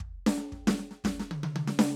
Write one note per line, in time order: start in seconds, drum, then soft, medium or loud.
0.00 kick medium
0.26 snare loud
0.37 snare soft
0.52 kick soft
0.52 snare soft
0.67 snare loud
0.79 snare soft
0.91 snare soft
1.04 kick soft
1.04 snare loud
1.20 snare medium
1.31 high tom loud
1.43 high tom loud
1.56 high tom loud
1.68 snare medium
1.79 snare loud